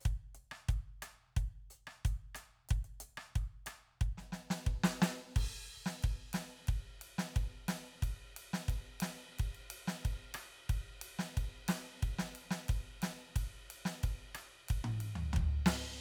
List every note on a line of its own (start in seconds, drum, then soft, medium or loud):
0.01 hi-hat pedal soft
0.06 kick medium
0.06 closed hi-hat soft
0.35 closed hi-hat soft
0.52 cross-stick medium
0.69 kick medium
0.69 closed hi-hat soft
1.03 cross-stick medium
1.03 closed hi-hat medium
1.37 kick medium
1.37 closed hi-hat soft
1.71 closed hi-hat medium
1.87 cross-stick medium
2.05 kick medium
2.05 closed hi-hat medium
2.35 cross-stick medium
2.35 closed hi-hat medium
2.69 kick medium
2.69 closed hi-hat medium
2.85 closed hi-hat soft
3.01 closed hi-hat medium
3.18 cross-stick medium
3.36 kick medium
3.36 closed hi-hat soft
3.67 cross-stick medium
3.67 closed hi-hat medium
4.01 kick medium
4.01 closed hi-hat soft
4.18 snare soft
4.33 snare soft
4.51 snare medium
4.67 kick medium
4.84 snare loud
5.02 snare loud
5.36 kick medium
5.36 crash medium
5.77 kick soft
5.86 snare medium
6.03 kick medium
6.03 ride medium
6.34 snare medium
6.34 ride medium
6.68 kick medium
6.68 ride medium
7.02 ride medium
7.19 snare medium
7.36 kick medium
7.36 ride soft
7.69 snare medium
7.69 ride medium
8.03 kick medium
8.03 ride medium
8.37 ride medium
8.54 snare medium
8.69 kick medium
8.69 ride medium
9.01 snare medium
9.01 ride loud
9.39 kick soft
9.39 ride medium
9.55 ride soft
9.71 ride loud
9.88 snare medium
10.05 kick soft
10.05 ride medium
10.35 cross-stick medium
10.35 ride medium
10.70 kick medium
10.70 ride medium
11.02 ride loud
11.19 snare medium
11.37 kick soft
11.37 ride medium
11.69 snare medium
11.69 ride loud
12.03 kick medium
12.03 ride medium
12.19 snare medium
12.36 ride medium
12.51 snare medium
12.69 kick medium
12.69 ride medium
13.02 snare medium
13.02 ride medium
13.36 kick medium
13.36 ride medium
13.71 ride medium
13.86 snare medium
14.04 kick medium
14.04 ride medium
14.35 cross-stick medium
14.35 ride medium
14.69 kick medium
14.69 ride medium
14.85 mid tom loud
15.01 ride medium
15.16 floor tom medium
15.34 kick medium
15.34 floor tom loud
15.66 snare loud
15.66 ride loud